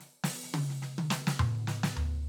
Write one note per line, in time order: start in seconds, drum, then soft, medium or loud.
0.00 snare soft
0.00 open hi-hat soft
0.24 open hi-hat loud
0.24 snare loud
0.43 snare soft
0.54 high tom loud
0.69 snare soft
0.82 snare medium
0.98 open hi-hat soft
0.98 high tom loud
1.10 snare loud
1.27 snare loud
1.39 mid tom loud
1.55 high tom medium
1.67 snare loud
1.83 snare loud
1.97 floor tom loud